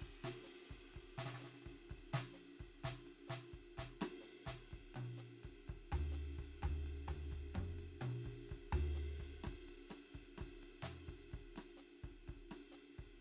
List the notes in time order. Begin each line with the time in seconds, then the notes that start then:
0.01 kick, ride
0.07 kick
0.25 snare, ride
0.44 hi-hat pedal, ride
0.70 kick, ride
0.94 kick, ride
1.02 kick
1.18 snare, ride
1.26 snare
1.34 snare
1.40 hi-hat pedal, ride
1.44 snare
1.54 snare
1.62 snare
1.66 kick, snare, ride
1.75 snare
1.80 snare
1.85 snare
1.88 kick, snare, ride
1.97 kick
2.14 snare, ride
2.34 hi-hat pedal, ride
2.60 kick, ride
2.84 kick, snare, ride
2.90 kick
3.07 ride
3.28 snare, hi-hat pedal, ride
3.53 kick, ride
3.78 kick, snare, ride
3.84 kick
4.02 cross-stick, ride
4.21 hi-hat pedal, ride
4.46 kick, snare, ride
4.53 kick
4.72 kick, ride
4.78 kick
4.95 high tom, ride
5.18 hi-hat pedal, ride
5.44 kick, ride
5.50 kick
5.68 kick, ride
5.75 kick
5.92 floor tom, ride
6.12 hi-hat pedal, ride
6.39 kick, ride
6.44 kick
6.63 kick, floor tom, ride
6.71 kick
6.87 ride
7.08 floor tom, hi-hat pedal, ride
7.32 kick, ride
7.38 kick
7.55 kick, mid tom, ride
7.64 kick
7.79 ride
8.01 hi-hat pedal, high tom, ride
8.25 kick, ride
8.31 kick
8.50 kick, ride
8.57 kick
8.73 floor tom, ride
8.95 hi-hat pedal, ride
9.18 kick, snare, ride
9.26 kick
9.44 kick, cross-stick, snare, ride
9.53 kick
9.69 ride
9.90 cross-stick, hi-hat pedal, ride
10.15 kick, ride
10.38 kick, cross-stick, ride
10.47 kick
10.64 ride
10.83 snare, hi-hat pedal, mid tom, ride
11.09 kick, ride
11.32 kick, ride
11.39 kick
11.56 cross-stick, ride
11.77 hi-hat pedal, ride
12.04 kick, ride
12.09 kick
12.28 kick, ride
12.34 kick
12.51 cross-stick, ride
12.72 hi-hat pedal, ride
12.99 kick, ride
13.04 kick